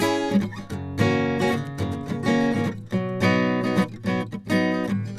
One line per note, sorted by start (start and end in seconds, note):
0.01 0.30 C#4
0.01 0.30 E4
0.01 0.39 G#4
0.30 0.41 C#4
0.30 0.40 E4
0.45 0.66 C4
0.71 1.74 F#2
0.71 0.99 C#3
0.99 1.52 C#3
0.99 1.45 E3
0.99 1.44 A#3
0.99 1.40 C#4
0.99 1.39 F#4
1.41 1.60 A#3
1.41 1.61 C#4
1.41 1.61 F#4
1.45 1.73 D3
1.52 1.80 C#3
1.79 2.00 F#2
1.79 2.08 C#3
1.79 2.01 E3
1.84 2.06 A#3
2.08 2.65 F#2
2.08 2.65 C#3
2.08 2.20 E3
2.08 2.25 A#3
2.24 2.53 C#4
2.24 2.53 F#4
2.29 2.49 E3
2.29 2.57 A#3
2.53 2.77 A#3
2.53 2.77 C#4
2.58 2.65 E3
2.66 2.73 C#3
2.66 2.87 D3
2.93 3.21 B2
2.93 3.21 F#3
3.21 3.72 B2
3.21 3.78 F#3
3.21 3.63 B3
3.21 3.62 D#4
3.65 3.79 B3
3.65 3.90 D#4
3.72 3.86 B2
3.78 3.89 F#3
3.78 3.88 B3
4.05 4.26 B2
4.05 4.27 F#3
4.10 4.29 B3
4.10 4.29 D#4
4.51 4.89 F#3
4.51 4.90 B3
4.51 4.73 D#4
4.73 4.91 D#4
4.88 4.99 A2
4.88 5.15 D3
4.93 5.04 B3